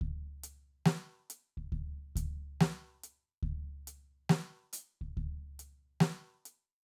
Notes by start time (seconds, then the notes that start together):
0.01 kick
0.44 closed hi-hat
0.86 snare
1.30 closed hi-hat
1.57 kick
1.72 kick, crash
2.16 kick, closed hi-hat
2.61 snare
3.04 closed hi-hat
3.43 kick
3.87 closed hi-hat
4.29 snare
4.73 closed hi-hat
5.01 kick
5.17 kick
5.59 closed hi-hat
6.01 snare
6.46 closed hi-hat